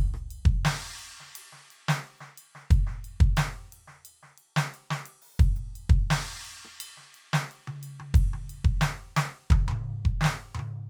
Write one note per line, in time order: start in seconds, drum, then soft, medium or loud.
0.14 cross-stick soft
0.31 ride bell soft
0.46 kick loud
0.65 snare loud
0.65 crash loud
0.99 ride soft
1.20 snare soft
1.36 hi-hat pedal medium
1.36 ride loud
1.53 snare soft
1.71 ride soft
1.89 snare loud
1.94 hi-hat pedal medium
2.18 snare soft
2.18 hi-hat pedal soft
2.38 ride bell medium
2.55 snare soft
2.71 kick loud
2.71 ride bell soft
2.87 snare soft
3.05 ride bell soft
3.21 kick loud
3.37 snare loud
3.37 ride bell medium
3.73 ride medium
3.88 snare soft
4.05 hi-hat pedal soft
4.05 ride bell medium
4.23 snare soft
4.38 ride soft
4.57 snare loud
4.62 hi-hat pedal medium
4.74 ride bell soft
4.91 snare medium
5.06 ride medium
5.22 open hi-hat medium
5.40 kick loud
5.40 ride medium
5.56 closed hi-hat medium
5.76 ride bell soft
5.90 kick loud
6.11 snare loud
6.11 crash loud
6.45 ride bell soft
6.65 cross-stick soft
6.81 ride bell loud
6.98 snare soft
7.15 ride soft
7.34 snare loud
7.51 ride soft
7.68 high tom loud
7.83 ride bell soft
8.00 high tom medium
8.14 kick loud
8.14 ride medium
8.34 high tom medium
8.50 ride bell soft
8.65 kick loud
8.81 snare loud
8.81 ride bell soft
9.17 snare loud
9.17 ride bell medium
9.50 kick loud
9.50 mid tom medium
9.50 high tom loud
9.68 mid tom loud
9.68 high tom medium
10.05 kick loud
10.21 snare loud
10.24 snare loud
10.55 mid tom loud
10.60 high tom medium